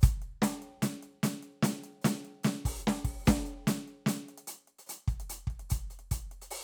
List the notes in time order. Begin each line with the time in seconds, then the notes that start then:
0.01 closed hi-hat, kick, hi-hat pedal
0.22 closed hi-hat
0.42 closed hi-hat, snare
0.62 closed hi-hat
0.82 closed hi-hat, snare
1.03 closed hi-hat
1.23 closed hi-hat, snare
1.43 closed hi-hat
1.63 closed hi-hat, snare
1.84 closed hi-hat
2.02 closed hi-hat, snare, hi-hat pedal
2.25 closed hi-hat
2.44 closed hi-hat, snare
2.65 open hi-hat, kick
2.81 hi-hat pedal
2.87 snare
3.05 kick, open hi-hat
3.26 closed hi-hat, kick, snare, hi-hat pedal
3.46 closed hi-hat
3.67 closed hi-hat, snare
3.88 closed hi-hat
4.06 closed hi-hat, snare
4.29 closed hi-hat
4.38 closed hi-hat
4.48 closed hi-hat
4.68 closed hi-hat
4.79 closed hi-hat
4.87 closed hi-hat, hi-hat pedal
5.08 closed hi-hat, kick
5.20 closed hi-hat
5.30 closed hi-hat
5.47 kick, closed hi-hat
5.60 closed hi-hat
5.70 closed hi-hat, kick, hi-hat pedal
5.90 closed hi-hat
5.99 closed hi-hat
6.11 open hi-hat, kick
6.32 closed hi-hat
6.42 closed hi-hat
6.51 open hi-hat